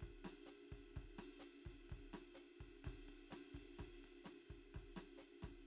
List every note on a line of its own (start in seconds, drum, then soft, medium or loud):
0.01 kick soft
0.01 ride soft
0.08 kick soft
0.25 cross-stick soft
0.25 ride medium
0.46 hi-hat pedal medium
0.46 ride soft
0.72 kick soft
0.72 ride soft
0.96 kick soft
0.96 ride soft
1.02 kick soft
1.19 cross-stick soft
1.19 ride medium
1.40 hi-hat pedal medium
1.40 ride soft
1.66 kick soft
1.66 ride soft
1.72 kick soft
1.90 kick soft
1.90 ride soft
1.97 kick soft
2.13 cross-stick soft
2.13 ride medium
2.35 hi-hat pedal medium
2.35 ride soft
2.61 kick soft
2.61 ride soft
2.85 kick soft
2.85 snare soft
2.85 ride medium
2.92 kick soft
3.09 ride soft
3.31 cross-stick soft
3.31 snare soft
3.31 hi-hat pedal medium
3.31 ride medium
3.55 kick soft
3.55 ride soft
3.79 kick soft
3.79 cross-stick soft
3.79 ride medium
3.86 kick soft
4.05 ride soft
4.25 cross-stick soft
4.25 snare soft
4.25 hi-hat pedal medium
4.25 ride soft
4.50 kick soft
4.50 ride soft
4.75 kick soft
4.75 cross-stick soft
4.75 ride soft
4.81 kick soft
4.97 cross-stick soft
4.97 ride medium
5.18 hi-hat pedal medium
5.22 ride soft
5.43 kick soft
5.43 cross-stick soft
5.43 ride soft
5.49 kick soft